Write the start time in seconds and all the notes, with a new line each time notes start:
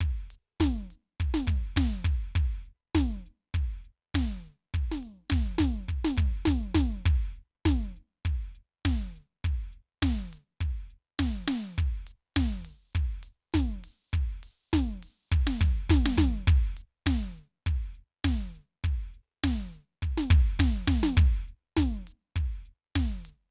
0.01 kick, snare, closed hi-hat, crash, ride
0.31 closed hi-hat
0.60 kick, snare
0.91 closed hi-hat
1.20 kick, crash
1.34 snare
1.47 open hi-hat, kick
1.76 kick, snare, hi-hat pedal
2.05 open hi-hat, kick
2.35 kick, hi-hat pedal
2.65 closed hi-hat
2.95 kick, snare
3.26 closed hi-hat
3.55 kick
3.85 closed hi-hat
4.15 kick, snare, closed hi-hat
4.47 closed hi-hat
4.74 kick, crash
4.92 snare
5.03 closed hi-hat
5.08 kick
5.29 kick, snare, hi-hat pedal
5.59 open hi-hat, kick, snare
5.86 kick, hi-hat pedal
6.05 snare
6.17 closed hi-hat, kick
6.45 kick, snare, hi-hat pedal
6.75 open hi-hat, kick, snare
7.05 kick, hi-hat pedal
7.35 closed hi-hat
7.66 kick, snare
7.96 closed hi-hat
8.25 kick
8.55 closed hi-hat
8.86 kick, snare
9.16 closed hi-hat
9.45 kick, ride
9.73 closed hi-hat
10.03 kick, snare
10.33 closed hi-hat
10.61 kick, closed hi-hat
10.90 closed hi-hat
11.19 kick, snare
11.48 closed hi-hat, snare
11.78 kick
12.07 closed hi-hat
12.35 kick, snare, hi-hat pedal
12.60 kick
12.65 open hi-hat
12.94 kick, hi-hat pedal
13.23 open hi-hat, hi-hat pedal
13.53 kick, snare, hi-hat pedal
13.84 open hi-hat, hi-hat pedal
14.13 kick, hi-hat pedal
14.44 open hi-hat
14.72 kick, snare, hi-hat pedal
15.03 open hi-hat, hi-hat pedal
15.30 kick, closed hi-hat, hi-hat pedal
15.47 snare
15.61 open hi-hat, kick
15.89 kick, snare, hi-hat pedal
16.06 snare
16.18 kick, snare
16.46 kick, hi-hat pedal
16.77 closed hi-hat
17.06 kick, snare
17.38 closed hi-hat
17.67 kick
17.95 closed hi-hat
18.25 kick, snare
18.55 closed hi-hat
18.84 kick, crash, ride
19.14 closed hi-hat
19.44 kick, snare
19.73 closed hi-hat
20.03 kick
20.18 snare
20.31 open hi-hat, kick
20.60 kick, snare
20.88 kick, snare
21.03 snare
21.16 kick, hi-hat pedal
21.48 closed hi-hat
21.77 kick, snare
22.07 closed hi-hat
22.36 kick
22.66 closed hi-hat
22.96 kick, snare
23.23 closed hi-hat, kick